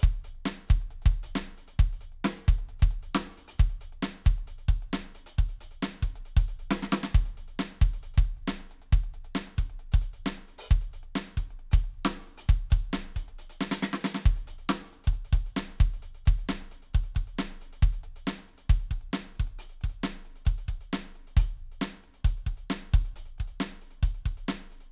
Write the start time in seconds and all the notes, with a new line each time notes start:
0.01 kick, closed hi-hat, hi-hat pedal
0.13 closed hi-hat
0.25 closed hi-hat
0.36 closed hi-hat
0.46 snare
0.59 closed hi-hat
0.71 kick
0.82 closed hi-hat
0.91 closed hi-hat
1.03 kick, closed hi-hat
1.12 closed hi-hat
1.24 closed hi-hat
1.36 snare
1.48 closed hi-hat
1.59 closed hi-hat
1.80 kick, closed hi-hat
1.94 closed hi-hat
2.01 closed hi-hat
2.13 closed hi-hat
2.25 snare
2.37 closed hi-hat
2.49 closed hi-hat, kick
2.59 closed hi-hat
2.70 closed hi-hat
2.80 closed hi-hat, kick
2.92 closed hi-hat
3.03 closed hi-hat
3.16 snare
3.28 closed hi-hat
3.38 closed hi-hat
3.49 closed hi-hat
3.59 closed hi-hat, kick
3.70 closed hi-hat
3.82 closed hi-hat
3.93 closed hi-hat
4.03 snare
4.17 closed hi-hat
4.26 closed hi-hat, kick
4.39 closed hi-hat
4.48 closed hi-hat
4.59 closed hi-hat
4.69 kick, closed hi-hat
4.83 closed hi-hat
4.94 snare
5.07 closed hi-hat
5.16 closed hi-hat
5.27 closed hi-hat
5.39 kick, closed hi-hat
5.50 closed hi-hat
5.61 closed hi-hat
5.72 closed hi-hat
5.83 snare
5.94 closed hi-hat
6.03 closed hi-hat, kick
6.16 closed hi-hat
6.26 closed hi-hat
6.37 closed hi-hat, kick
6.49 closed hi-hat
6.60 closed hi-hat
6.71 snare
6.83 snare
6.93 snare
7.04 snare
7.15 closed hi-hat, kick
7.26 closed hi-hat
7.38 closed hi-hat
7.49 closed hi-hat
7.60 snare
7.72 closed hi-hat
7.82 closed hi-hat, kick
7.94 closed hi-hat
8.04 closed hi-hat
8.15 closed hi-hat, kick
8.25 closed hi-hat
8.38 closed hi-hat
8.48 snare
8.61 closed hi-hat
8.72 closed hi-hat
8.83 closed hi-hat
8.93 kick, closed hi-hat
9.04 closed hi-hat
9.15 closed hi-hat
9.25 closed hi-hat
9.36 snare
9.48 closed hi-hat
9.59 closed hi-hat, kick
9.70 closed hi-hat
9.80 closed hi-hat
9.93 closed hi-hat, kick
10.02 closed hi-hat
10.14 closed hi-hat
10.27 snare
10.39 closed hi-hat
10.49 closed hi-hat
10.59 open hi-hat
10.71 kick, closed hi-hat
10.82 closed hi-hat
10.94 closed hi-hat
11.04 closed hi-hat
11.16 snare
11.28 closed hi-hat
11.38 closed hi-hat, kick
11.51 closed hi-hat
11.60 closed hi-hat
11.72 closed hi-hat, kick
11.85 closed hi-hat
11.97 closed hi-hat
12.06 snare
12.28 closed hi-hat
12.38 closed hi-hat
12.49 closed hi-hat, kick
12.61 closed hi-hat
12.71 closed hi-hat, kick
12.83 closed hi-hat
12.94 snare
13.07 closed hi-hat
13.17 closed hi-hat, kick
13.29 closed hi-hat
13.39 closed hi-hat
13.50 closed hi-hat
13.61 snare
13.72 snare
13.83 snare
13.94 snare
14.05 snare
14.15 snare
14.26 closed hi-hat, kick
14.37 closed hi-hat
14.48 closed hi-hat
14.59 closed hi-hat
14.70 snare
14.82 closed hi-hat
14.94 closed hi-hat
15.05 closed hi-hat, kick
15.14 closed hi-hat
15.25 closed hi-hat
15.33 kick, closed hi-hat
15.47 closed hi-hat
15.57 snare
15.70 closed hi-hat
15.81 closed hi-hat, kick
15.94 closed hi-hat
16.03 closed hi-hat
16.15 closed hi-hat
16.26 closed hi-hat, kick
16.39 closed hi-hat
16.50 snare
16.62 closed hi-hat
16.72 closed hi-hat
16.83 closed hi-hat
16.95 closed hi-hat, kick
17.04 closed hi-hat
17.16 kick, closed hi-hat
17.28 closed hi-hat
17.39 snare
17.51 closed hi-hat
17.62 closed hi-hat
17.73 closed hi-hat
17.83 kick, closed hi-hat
17.93 closed hi-hat
18.04 closed hi-hat
18.17 closed hi-hat
18.26 kick, snare
18.39 closed hi-hat
18.49 closed hi-hat
18.59 closed hi-hat
18.70 closed hi-hat, kick
18.80 closed hi-hat
18.91 kick, closed hi-hat
19.02 closed hi-hat
19.14 snare
19.25 closed hi-hat
19.36 closed hi-hat
19.40 kick
19.48 closed hi-hat
19.60 closed hi-hat
19.70 closed hi-hat
19.82 kick, closed hi-hat
19.90 closed hi-hat
20.04 snare
20.15 closed hi-hat
20.26 closed hi-hat
20.36 closed hi-hat
20.46 closed hi-hat, kick
20.59 closed hi-hat
20.69 kick
20.81 closed hi-hat
20.94 snare
21.06 closed hi-hat
21.16 closed hi-hat
21.28 closed hi-hat
21.37 closed hi-hat, kick
21.50 closed hi-hat
21.61 closed hi-hat
21.72 closed hi-hat
21.82 snare
21.93 closed hi-hat
22.05 closed hi-hat
22.15 closed hi-hat
22.25 closed hi-hat, kick
22.38 closed hi-hat
22.47 kick, closed hi-hat
22.58 closed hi-hat
22.71 snare
22.82 closed hi-hat
22.94 closed hi-hat, kick
23.05 closed hi-hat
23.17 closed hi-hat
23.26 closed hi-hat
23.39 kick, closed hi-hat
23.48 closed hi-hat
23.61 snare
23.72 closed hi-hat
23.82 closed hi-hat
23.91 closed hi-hat
24.03 closed hi-hat, kick
24.15 closed hi-hat
24.26 closed hi-hat, kick
24.38 closed hi-hat
24.49 snare
24.61 closed hi-hat
24.72 closed hi-hat
24.81 closed hi-hat